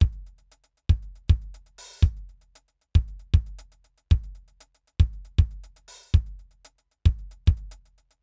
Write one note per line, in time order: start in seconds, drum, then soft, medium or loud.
0.01 kick loud
0.01 closed hi-hat soft
0.13 closed hi-hat soft
0.27 closed hi-hat soft
0.39 closed hi-hat soft
0.52 closed hi-hat medium
0.64 closed hi-hat medium
0.78 closed hi-hat soft
0.90 kick loud
0.90 closed hi-hat soft
1.03 closed hi-hat soft
1.16 closed hi-hat soft
1.29 kick loud
1.29 closed hi-hat soft
1.42 closed hi-hat soft
1.55 closed hi-hat medium
1.67 closed hi-hat soft
1.79 open hi-hat loud
1.94 open hi-hat soft
2.01 kick loud
2.01 hi-hat pedal soft
2.06 closed hi-hat soft
2.17 closed hi-hat soft
2.30 closed hi-hat soft
2.42 closed hi-hat soft
2.56 closed hi-hat loud
2.69 closed hi-hat soft
2.82 closed hi-hat soft
2.95 kick loud
2.95 closed hi-hat soft
3.09 closed hi-hat soft
3.20 closed hi-hat soft
3.34 kick loud
3.34 closed hi-hat soft
3.47 closed hi-hat soft
3.59 closed hi-hat loud
3.72 closed hi-hat medium
3.85 closed hi-hat medium
3.98 closed hi-hat soft
4.11 kick loud
4.11 closed hi-hat soft
4.24 closed hi-hat soft
4.35 closed hi-hat soft
4.48 closed hi-hat soft
4.61 closed hi-hat loud
4.75 closed hi-hat medium
4.88 closed hi-hat medium
5.00 kick loud
5.00 closed hi-hat soft
5.14 closed hi-hat soft
5.25 closed hi-hat medium
5.39 kick loud
5.39 closed hi-hat soft
5.51 closed hi-hat soft
5.64 closed hi-hat medium
5.77 closed hi-hat medium
5.88 open hi-hat loud
6.02 open hi-hat medium
6.12 kick loud
6.12 hi-hat pedal soft
6.16 closed hi-hat soft
6.27 closed hi-hat soft
6.40 closed hi-hat soft
6.51 closed hi-hat soft
6.65 closed hi-hat loud
6.79 closed hi-hat soft
6.92 closed hi-hat soft
7.06 closed hi-hat medium
7.06 kick loud
7.19 closed hi-hat soft
7.32 closed hi-hat medium
7.47 kick loud
7.47 closed hi-hat soft
7.57 closed hi-hat soft
7.72 closed hi-hat loud
7.86 closed hi-hat soft
7.99 closed hi-hat soft
8.11 closed hi-hat medium